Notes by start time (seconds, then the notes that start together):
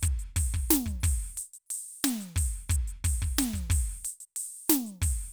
0.01 closed hi-hat, kick, hi-hat pedal
0.19 closed hi-hat
0.36 open hi-hat, kick
0.54 kick
0.69 closed hi-hat, snare, hi-hat pedal
0.86 closed hi-hat, kick
1.00 open hi-hat, kick, hi-hat pedal
1.37 open hi-hat, hi-hat pedal
1.53 closed hi-hat
1.66 hi-hat pedal
1.70 open hi-hat
2.03 closed hi-hat, snare, hi-hat pedal
2.20 closed hi-hat
2.35 open hi-hat, kick, hi-hat pedal
2.69 closed hi-hat, kick, hi-hat pedal
2.87 closed hi-hat
3.04 open hi-hat, kick
3.22 kick
3.36 closed hi-hat, snare, hi-hat pedal
3.53 closed hi-hat, kick
3.70 open hi-hat, kick
4.04 open hi-hat, hi-hat pedal
4.20 closed hi-hat
4.36 open hi-hat
4.68 closed hi-hat, snare, hi-hat pedal
4.86 closed hi-hat
5.02 open hi-hat, kick